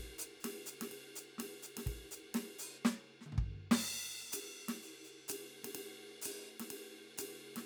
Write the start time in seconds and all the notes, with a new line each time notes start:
0.18 hi-hat pedal
0.40 snare, hi-hat pedal
0.44 ride
0.66 hi-hat pedal
0.81 snare, ride
0.89 hi-hat pedal, ride
1.15 hi-hat pedal
1.38 snare, hi-hat pedal, ride
1.62 hi-hat pedal
1.77 snare, ride
1.86 kick, hi-hat pedal, ride
2.11 hi-hat pedal
2.34 snare, hi-hat pedal, ride
2.58 hi-hat pedal
2.85 snare
3.21 snare
3.26 high tom
3.32 floor tom
3.38 kick
3.71 snare, crash
3.80 hi-hat pedal
3.93 snare
4.22 snare
4.28 snare, hi-hat pedal
4.33 ride
4.68 snare, ride
4.82 hi-hat pedal
5.04 hi-hat pedal
5.28 hi-hat pedal, ride
5.63 snare, ride
5.73 hi-hat pedal, ride
6.21 hi-hat pedal
6.25 ride
6.59 snare, ride
6.65 hi-hat pedal
6.70 ride
7.17 hi-hat pedal, ride
7.56 snare, ride